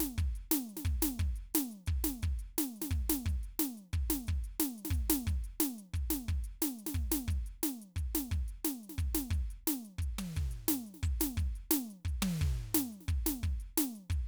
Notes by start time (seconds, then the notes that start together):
0.01 snare, closed hi-hat
0.19 kick, closed hi-hat
0.36 closed hi-hat
0.52 snare, closed hi-hat
0.70 closed hi-hat
0.77 snare
0.85 kick, closed hi-hat
1.02 snare, closed hi-hat
1.20 kick, closed hi-hat
1.36 closed hi-hat
1.55 snare, closed hi-hat
1.72 closed hi-hat
1.87 kick, closed hi-hat
2.05 snare, closed hi-hat
2.23 kick, closed hi-hat
2.40 closed hi-hat
2.59 snare, closed hi-hat
2.76 closed hi-hat
2.82 snare
2.91 kick, closed hi-hat
3.10 snare, closed hi-hat
3.26 kick, closed hi-hat
3.44 closed hi-hat
3.60 snare, closed hi-hat
3.78 closed hi-hat
3.94 kick, closed hi-hat
4.11 snare, closed hi-hat
4.28 kick, closed hi-hat
4.44 closed hi-hat
4.60 snare, closed hi-hat
4.78 closed hi-hat
4.85 snare
4.91 kick, closed hi-hat
5.10 snare, closed hi-hat
5.28 kick, closed hi-hat
5.44 closed hi-hat
5.61 snare, closed hi-hat
5.79 closed hi-hat
5.94 kick, closed hi-hat
6.11 snare, closed hi-hat
6.29 kick, closed hi-hat
6.44 closed hi-hat
6.62 snare, closed hi-hat
6.79 closed hi-hat
6.87 snare
6.95 kick, closed hi-hat
7.12 snare, closed hi-hat
7.28 kick, closed hi-hat
7.47 closed hi-hat
7.64 snare, closed hi-hat
7.82 closed hi-hat
7.97 kick, closed hi-hat
8.15 snare, closed hi-hat
8.32 kick, closed hi-hat
8.49 closed hi-hat
8.65 snare, closed hi-hat
8.84 closed hi-hat
8.90 snare
8.99 kick, closed hi-hat
9.15 snare, closed hi-hat
9.31 kick, closed hi-hat
9.51 closed hi-hat
9.68 closed hi-hat, snare
9.85 closed hi-hat
9.99 kick, closed hi-hat
10.19 closed hi-hat, high tom
10.37 kick, closed hi-hat
10.52 closed hi-hat
10.69 closed hi-hat, snare
10.87 closed hi-hat
10.95 snare
11.03 closed hi-hat, kick
11.21 snare, closed hi-hat
11.38 kick, closed hi-hat
11.56 closed hi-hat
11.72 snare, closed hi-hat
11.91 closed hi-hat
12.06 kick, closed hi-hat
12.23 closed hi-hat, high tom
12.42 kick, closed hi-hat
12.58 closed hi-hat
12.75 snare, closed hi-hat
12.93 closed hi-hat
13.01 snare
13.09 kick, closed hi-hat
13.27 snare, closed hi-hat
13.44 kick, closed hi-hat
13.60 closed hi-hat
13.78 closed hi-hat, snare
13.96 closed hi-hat
14.10 kick, closed hi-hat